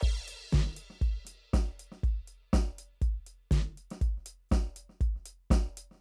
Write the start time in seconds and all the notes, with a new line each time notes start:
0.03 kick, hi-hat pedal, crash
0.28 open hi-hat, kick
0.50 kick, snare, closed hi-hat, hi-hat pedal
0.66 snare
0.76 closed hi-hat
0.90 snare
1.01 kick, closed hi-hat
1.25 closed hi-hat, snare
1.53 kick, snare, closed hi-hat
1.79 closed hi-hat
1.92 snare
2.03 kick, closed hi-hat
2.27 closed hi-hat
2.53 kick, snare, closed hi-hat
2.78 closed hi-hat
3.01 kick, closed hi-hat
3.26 closed hi-hat
3.51 kick, snare, closed hi-hat
3.77 closed hi-hat
3.90 snare, closed hi-hat
4.01 kick, closed hi-hat
4.17 snare
4.26 open hi-hat
4.49 kick, snare, closed hi-hat, hi-hat pedal
4.76 closed hi-hat
4.89 snare
5.00 kick, closed hi-hat
5.16 snare
5.25 closed hi-hat
5.50 kick, snare, closed hi-hat
5.77 closed hi-hat
5.91 snare
5.94 snare